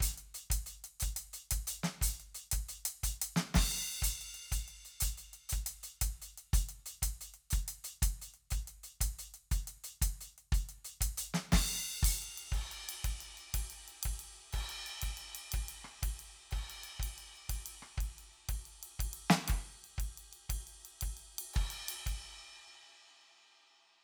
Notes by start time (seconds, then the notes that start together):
0.01 closed hi-hat, kick
0.18 closed hi-hat
0.35 closed hi-hat
0.51 kick, closed hi-hat
0.67 closed hi-hat
0.85 closed hi-hat
1.01 closed hi-hat, kick
1.17 closed hi-hat
1.34 closed hi-hat
1.52 kick, closed hi-hat
1.68 closed hi-hat
1.84 snare
2.02 open hi-hat, kick
2.21 closed hi-hat
2.35 closed hi-hat
2.52 kick, closed hi-hat
2.69 closed hi-hat
2.86 closed hi-hat
3.04 closed hi-hat, kick
3.22 closed hi-hat
3.37 snare
3.55 kick, snare, crash
4.03 closed hi-hat, kick
4.07 kick
4.22 closed hi-hat
4.35 closed hi-hat
4.53 closed hi-hat, kick
4.69 closed hi-hat
4.86 closed hi-hat
5.01 closed hi-hat, kick
5.18 closed hi-hat
5.34 closed hi-hat
5.50 closed hi-hat, kick
5.67 closed hi-hat
5.84 closed hi-hat
6.02 kick, closed hi-hat
6.22 closed hi-hat
6.38 closed hi-hat
6.54 closed hi-hat, kick
6.69 closed hi-hat
6.87 closed hi-hat
7.03 kick, closed hi-hat
7.22 closed hi-hat
7.35 closed hi-hat
7.51 closed hi-hat, kick
7.69 closed hi-hat
7.85 closed hi-hat
8.03 kick, closed hi-hat
8.22 closed hi-hat
8.35 closed hi-hat
8.51 closed hi-hat, kick
8.68 closed hi-hat
8.84 closed hi-hat
9.01 kick, closed hi-hat
9.19 closed hi-hat
9.35 closed hi-hat
9.52 closed hi-hat, kick
9.68 closed hi-hat
9.85 closed hi-hat
10.02 kick, closed hi-hat
10.21 closed hi-hat
10.39 closed hi-hat
10.53 closed hi-hat, kick
10.70 closed hi-hat
10.85 closed hi-hat
11.01 kick, closed hi-hat
11.18 closed hi-hat
11.35 snare
11.53 kick, snare, crash
12.04 open hi-hat, kick, ride
12.23 ride
12.38 ride
12.53 kick, ride
12.72 ride
12.90 ride
13.05 kick, ride
13.21 ride
13.38 ride
13.55 kick, ride
13.71 ride
13.89 ride
14.04 kick, ride
14.20 ride
14.54 kick, ride
14.70 ride
14.87 ride
15.03 kick, ride
15.18 ride
15.36 ride
15.53 kick, ride
15.69 ride
15.85 cross-stick
16.03 kick, ride
16.20 ride
16.52 kick, ride
16.71 ride
16.84 ride
17.00 kick, ride
17.19 ride
17.36 ride
17.50 kick, ride
17.67 ride
17.83 cross-stick
17.98 kick, ride
18.19 ride
18.34 ride
18.49 kick, ride
18.66 ride
18.84 ride
19.00 kick, ride
19.14 ride
19.31 snare
19.49 kick, cross-stick, ride
19.85 ride
19.99 kick, ride
20.18 ride
20.34 ride
20.50 kick, ride
20.68 ride
20.86 ride
21.02 kick, ride
21.18 ride
21.39 ride
21.54 kick, ride
21.71 ride
21.89 ride
22.07 kick, ride